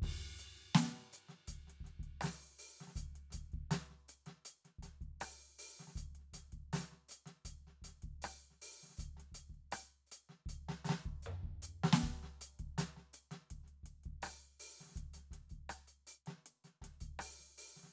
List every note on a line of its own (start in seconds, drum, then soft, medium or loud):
0.02 kick medium
0.02 crash medium
0.39 closed hi-hat soft
0.56 closed hi-hat soft
0.75 open hi-hat medium
0.75 snare loud
0.83 snare soft
1.13 open hi-hat medium
1.13 hi-hat pedal medium
1.29 snare soft
1.29 closed hi-hat soft
1.48 closed hi-hat medium
1.48 kick soft
1.67 snare soft
1.67 closed hi-hat soft
1.80 kick soft
1.80 snare soft
1.86 closed hi-hat soft
1.99 kick soft
1.99 closed hi-hat soft
2.21 open hi-hat medium
2.21 cross-stick medium
2.21 snare medium
2.59 open hi-hat medium
2.80 snare soft
2.87 snare soft
2.95 closed hi-hat medium
2.95 kick soft
2.95 hi-hat pedal soft
3.14 snare soft
3.14 closed hi-hat soft
3.30 closed hi-hat medium
3.30 kick soft
3.30 snare soft
3.52 kick soft
3.52 closed hi-hat soft
3.71 closed hi-hat medium
3.71 snare medium
3.90 snare soft
4.08 closed hi-hat soft
4.08 hi-hat pedal medium
4.26 snare soft
4.26 closed hi-hat soft
4.45 closed hi-hat medium
4.65 snare soft
4.65 closed hi-hat soft
4.79 closed hi-hat soft
4.79 kick soft
4.79 snare soft
5.01 kick soft
5.01 closed hi-hat soft
5.20 open hi-hat medium
5.20 cross-stick medium
5.59 open hi-hat medium
5.79 snare soft
5.87 snare soft
5.95 closed hi-hat medium
5.95 kick soft
5.95 hi-hat pedal soft
6.15 snare soft
6.15 closed hi-hat soft
6.33 closed hi-hat medium
6.33 kick soft
6.33 snare soft
6.52 kick soft
6.52 closed hi-hat soft
6.73 open hi-hat medium
6.73 snare medium
6.79 snare soft
6.91 snare soft
7.08 closed hi-hat medium
7.08 hi-hat pedal medium
7.26 snare soft
7.26 closed hi-hat soft
7.45 closed hi-hat medium
7.45 kick soft
7.67 snare soft
7.82 closed hi-hat medium
7.82 kick soft
7.82 snare soft
8.02 kick soft
8.02 closed hi-hat soft
8.22 open hi-hat medium
8.22 cross-stick medium
8.50 snare soft
8.62 open hi-hat medium
8.83 snare soft
8.89 snare soft
8.93 snare soft
8.93 hi-hat pedal soft
8.99 closed hi-hat soft
8.99 kick soft
9.17 snare soft
9.17 closed hi-hat soft
9.32 closed hi-hat medium
9.32 kick soft
9.50 kick soft
9.54 closed hi-hat soft
9.72 open hi-hat medium
9.72 cross-stick medium
10.06 hi-hat pedal soft
10.11 closed hi-hat medium
10.29 snare soft
10.46 closed hi-hat soft
10.46 kick soft
10.68 snare soft
10.85 snare soft
10.85 hi-hat pedal medium
10.89 snare medium
11.05 kick soft
11.22 hi-hat pedal soft
11.22 floor tom soft
11.43 kick soft
11.62 hi-hat pedal medium
11.84 snare medium
11.93 snare loud
12.03 kick soft
12.23 snare soft
12.41 closed hi-hat medium
12.59 kick soft
12.59 closed hi-hat soft
12.78 closed hi-hat medium
12.78 snare medium
12.96 snare soft
13.13 closed hi-hat soft
13.13 hi-hat pedal medium
13.31 snare soft
13.31 closed hi-hat soft
13.50 kick soft
13.50 closed hi-hat soft
13.63 snare soft
13.68 closed hi-hat soft
13.83 kick soft
13.83 closed hi-hat soft
14.03 kick soft
14.03 closed hi-hat soft
14.22 open hi-hat medium
14.22 cross-stick medium
14.26 cross-stick soft
14.60 open hi-hat medium
14.80 snare soft
14.86 snare soft
14.90 snare soft
14.95 kick soft
14.95 closed hi-hat soft
14.95 hi-hat pedal soft
15.13 closed hi-hat soft
15.13 snare soft
15.31 kick soft
15.31 snare soft
15.31 closed hi-hat soft
15.49 closed hi-hat soft
15.49 kick soft
15.69 closed hi-hat medium
15.69 cross-stick medium
15.87 closed hi-hat soft
16.07 open hi-hat medium
16.26 snare soft
16.26 closed hi-hat soft
16.46 closed hi-hat soft
16.64 closed hi-hat soft
16.64 snare soft
16.82 kick soft
16.82 snare soft
16.82 closed hi-hat soft
17.00 closed hi-hat soft
17.00 kick soft
17.19 open hi-hat medium
17.19 cross-stick medium
17.40 snare soft
17.58 open hi-hat medium
17.76 snare soft
17.83 snare soft
17.88 snare soft